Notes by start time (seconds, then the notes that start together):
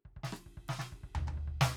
0.05 kick
0.16 kick
0.23 snare, ride
0.32 cross-stick
0.36 ride
0.46 kick
0.57 kick
0.68 snare, ride
0.79 snare, ride
0.92 kick
1.03 kick
1.15 floor tom, high tom
1.27 floor tom, high tom
1.37 kick
1.47 kick
1.61 snare, ride